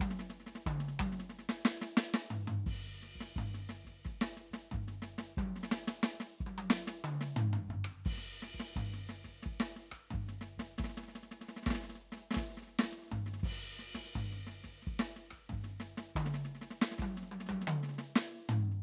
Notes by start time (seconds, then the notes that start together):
0.01 kick, high tom
0.11 kick, snare
0.20 snare
0.30 snare
0.47 snare
0.56 snare
0.67 kick, mid tom
0.76 kick
0.81 snare
0.89 snare
1.00 kick, high tom
1.13 snare
1.20 snare
1.30 snare
1.39 snare
1.50 snare
1.66 snare
1.82 snare
1.98 snare
2.15 snare
2.31 floor tom
2.37 kick
2.48 floor tom
2.67 kick, crash
2.74 crash
3.03 snare
3.16 kick
3.21 snare
3.37 kick, floor tom
3.55 snare
3.70 snare, hi-hat pedal
3.86 kick, snare
4.05 kick, snare
4.22 snare
4.37 snare, hi-hat pedal
4.52 kick, snare
4.72 kick, floor tom
4.89 snare
5.03 snare, hi-hat pedal
5.19 snare
5.38 kick, high tom
5.47 kick
5.57 snare
5.64 snare
5.72 snare
5.88 snare
6.04 snare
6.21 snare
6.41 kick
6.47 kick, high tom
6.59 high tom
6.71 snare
6.88 snare
7.05 mid tom
7.22 snare
7.37 floor tom
7.54 floor tom
7.68 kick, floor tom
7.85 cross-stick
8.06 kick, crash
8.18 kick, snare
8.41 snare, hi-hat pedal
8.55 kick
8.61 snare
8.77 kick, floor tom
8.94 snare
9.10 snare, hi-hat pedal
9.25 kick, snare
9.43 kick, snare
9.61 snare
9.77 snare, hi-hat pedal
9.92 kick, cross-stick
10.11 kick, floor tom
10.29 snare
10.42 snare
10.48 hi-hat pedal
10.59 kick, snare
10.79 kick, snare
10.85 snare
10.90 snare
10.98 snare
11.04 snare
11.09 snare
11.16 snare
11.24 snare
11.32 snare
11.40 snare
11.42 snare
11.49 snare
11.57 snare
11.64 kick, snare
11.71 snare
11.75 snare
11.82 snare
11.84 snare
11.90 snare
11.96 snare
12.13 snare
12.18 snare
12.31 snare
12.35 kick, snare
12.37 snare
12.40 snare
12.44 snare
12.48 snare
12.51 snare
12.58 snare
12.63 snare
12.68 snare
12.76 snare
12.80 snare
12.84 snare
12.93 snare
12.99 snare
13.03 snare
13.08 snare, floor tom
13.13 kick
13.27 snare
13.34 snare
13.40 kick, snare
13.45 snare, crash
13.52 snare
13.80 snare, hi-hat pedal
13.95 kick, snare
14.06 snare
14.16 kick, floor tom
14.33 snare
14.47 snare, hi-hat pedal
14.64 kick, snare
14.83 snare
14.88 kick
15.00 snare
15.16 snare, hi-hat pedal
15.31 kick, cross-stick
15.50 kick, floor tom
15.65 snare
15.81 snare, hi-hat pedal
15.98 snare
16.16 kick, mid tom
16.25 kick, snare
16.35 snare
16.45 snare
16.56 snare
16.62 snare
16.71 snare
16.82 snare
16.99 kick, snare, high tom
17.18 snare
17.23 snare
17.32 high tom
17.41 snare
17.47 snare, high tom
17.51 kick
17.62 snare
17.68 snare, mid tom
17.84 snare
17.89 snare
17.94 snare
17.99 snare
18.16 snare
18.39 snare
18.50 kick, floor tom
18.72 snare